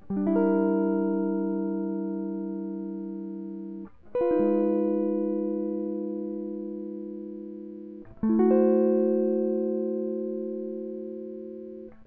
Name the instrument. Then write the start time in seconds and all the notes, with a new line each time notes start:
electric guitar
0.12 G3
0.18 D4
0.28 E4
0.37 A#4
4.16 B4
4.22 F4
4.32 D#4
4.41 G#3
8.24 A3
8.30 E4
8.40 F#4
8.51 C5